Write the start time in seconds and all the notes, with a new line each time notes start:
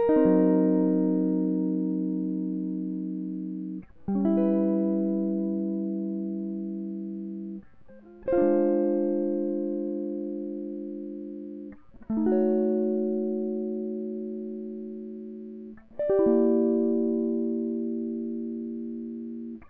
0.00 A#4
0.09 D#4
0.17 C4
0.26 F#3
4.09 G3
4.16 C#4
4.25 E4
4.38 B4
8.28 C5
8.33 F4
8.38 G#3 D4
12.10 A3
12.17 D#4
12.27 F#4
12.32 C#5
16.00 D5
16.10 G4
16.19 E4
16.27 A#3